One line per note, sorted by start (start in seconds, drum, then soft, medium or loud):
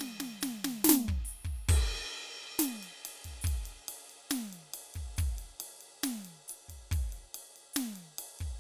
0.01 snare medium
0.20 snare medium
0.41 snare medium
0.41 hi-hat pedal medium
0.65 snare medium
0.85 snare loud
0.89 snare loud
1.08 kick medium
1.25 hi-hat pedal loud
1.45 kick soft
1.69 open hi-hat loud
1.69 kick medium
1.69 ride loud
2.59 snare medium
2.59 hi-hat pedal medium
2.59 ride loud
2.83 ride medium
3.05 ride loud
3.25 kick soft
3.25 ride medium
3.42 kick medium
3.42 hi-hat pedal loud
3.47 ride loud
3.66 ride medium
3.88 ride loud
4.10 ride soft
4.30 snare medium
4.30 hi-hat pedal loud
4.30 ride medium
4.53 ride medium
4.74 ride loud
4.94 kick soft
4.94 ride medium
5.17 kick medium
5.17 hi-hat pedal medium
5.17 ride loud
5.39 ride medium
5.60 ride loud
5.81 ride medium
6.03 snare medium
6.03 hi-hat pedal loud
6.03 ride loud
6.25 ride medium
6.48 hi-hat pedal loud
6.48 ride medium
6.69 kick soft
6.69 ride medium
6.91 kick medium
6.91 hi-hat pedal soft
6.91 ride medium
7.13 ride medium
7.35 ride loud
7.56 ride soft
7.74 snare medium
7.74 hi-hat pedal loud
7.74 ride loud
7.96 ride medium
8.19 ride loud
8.39 kick soft
8.39 ride soft